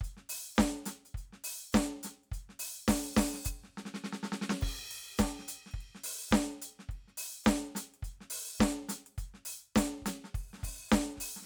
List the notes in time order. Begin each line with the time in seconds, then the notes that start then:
0.01 closed hi-hat, kick
0.17 snare
0.29 open hi-hat
0.55 kick, snare, hi-hat pedal
0.85 closed hi-hat, snare
1.05 closed hi-hat
1.14 closed hi-hat, kick
1.32 snare
1.44 open hi-hat
1.72 kick, snare, hi-hat pedal
2.03 closed hi-hat, snare
2.23 closed hi-hat
2.31 closed hi-hat, kick
2.49 snare
2.59 open hi-hat
2.88 open hi-hat, kick, snare
3.16 open hi-hat, kick, snare
3.33 snare
3.44 open hi-hat, kick, hi-hat pedal
3.63 snare
3.69 kick
3.77 snare
3.85 snare
3.94 snare
4.04 snare
4.12 snare
4.23 snare
4.32 snare
4.41 snare
4.49 snare
4.61 kick, crash
4.91 open hi-hat
5.17 kick, snare, closed hi-hat, hi-hat pedal
5.39 snare
5.48 closed hi-hat
5.66 snare
5.71 kick, closed hi-hat
5.80 closed hi-hat
5.94 snare
6.03 open hi-hat
6.30 kick, snare, hi-hat pedal
6.61 closed hi-hat
6.79 snare
6.89 kick, closed hi-hat
7.07 snare
7.17 open hi-hat
7.44 kick, snare, hi-hat pedal
7.48 closed hi-hat
7.75 closed hi-hat, snare
7.94 closed hi-hat
8.02 closed hi-hat, kick
8.20 snare
8.30 open hi-hat
8.58 kick, snare, closed hi-hat, hi-hat pedal
8.82 kick
8.88 closed hi-hat, snare
9.06 closed hi-hat
9.18 closed hi-hat, kick
9.34 snare
9.45 open hi-hat
9.75 closed hi-hat, kick, snare, hi-hat pedal
10.02 closed hi-hat, kick, snare
10.24 snare
10.34 kick, open hi-hat
10.53 snare
10.58 snare
10.62 open hi-hat, kick, snare
10.67 snare
10.88 closed hi-hat, snare, hi-hat pedal
10.92 kick
11.16 kick, snare
11.20 open hi-hat
11.36 snare
11.42 snare